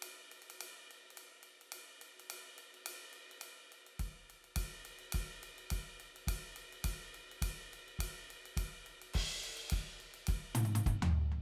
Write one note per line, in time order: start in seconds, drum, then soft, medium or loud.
0.03 ride loud
0.32 ride medium
0.43 ride soft
0.51 ride medium
0.61 ride loud
0.92 ride medium
1.11 ride soft
1.18 ride medium
1.44 ride medium
1.62 ride soft
1.73 ride loud
2.02 ride medium
2.20 ride medium
2.31 ride loud
2.59 ride medium
2.75 ride soft
2.87 ride loud
3.14 ride soft
3.32 ride soft
3.42 ride medium
3.73 ride soft
3.87 ride soft
4.00 kick soft
4.00 ride medium
4.31 ride soft
4.45 ride soft
4.57 kick medium
4.57 ride loud
4.86 ride medium
5.00 ride soft
5.13 kick medium
5.13 ride loud
5.44 ride medium
5.59 ride soft
5.71 kick medium
5.71 ride loud
6.01 ride medium
6.17 ride medium
6.28 kick medium
6.28 ride loud
6.57 ride medium
6.73 ride soft
6.85 kick medium
6.85 ride loud
7.15 ride medium
7.32 ride soft
7.42 kick medium
7.42 ride loud
7.74 ride medium
7.89 ride soft
8.00 kick soft
8.00 ride loud
8.31 ride medium
8.46 ride medium
8.57 kick medium
8.57 ride loud
8.87 ride soft
9.02 ride medium
9.14 kick medium
9.14 ride loud
9.44 ride medium
9.58 ride medium
9.71 kick medium
9.71 ride loud
10.01 ride soft
10.15 ride medium
10.28 kick medium
10.28 ride loud
10.55 mid tom loud
10.76 mid tom loud
10.87 kick medium
10.87 mid tom medium
11.03 floor tom loud
11.32 floor tom soft